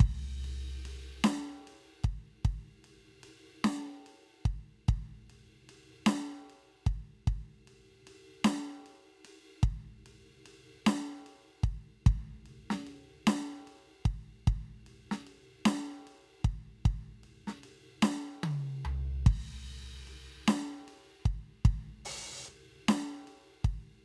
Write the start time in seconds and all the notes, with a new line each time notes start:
0.01 kick, ride, crash
0.45 ride
0.86 ride
1.25 snare, ride
1.68 ride
2.04 kick, ride
2.46 kick, ride
2.85 ride
3.24 ride
3.65 snare, ride
4.07 ride
4.46 kick, ride
4.89 kick, ride
5.30 ride
5.70 ride
6.07 snare, ride
6.50 ride
6.87 kick, ride
7.28 kick, ride
7.68 ride
8.08 ride
8.45 snare, ride
8.87 ride
9.26 ride
9.64 kick, ride
10.07 ride
10.46 ride
10.87 snare, ride
11.27 ride
11.64 kick, ride
12.07 kick, ride
12.46 ride
12.71 snare
12.88 ride
13.28 snare, ride
13.44 snare
13.68 ride
14.06 kick, ride
14.48 kick, ride
14.87 ride
15.12 snare
15.28 ride
15.66 snare, ride
15.82 snare
16.08 ride
16.45 kick, ride
16.86 kick, ride
17.16 snare
17.24 ride
17.48 snare
17.64 ride
18.03 snare, ride
18.44 high tom, ride
18.86 floor tom
19.27 kick, crash
19.70 ride
20.08 ride
20.48 snare, ride
20.89 ride
21.26 kick, ride
21.66 kick, ride
22.06 open hi-hat, ride
22.46 hi-hat pedal, ride
22.89 snare, ride
23.28 ride
23.65 kick, ride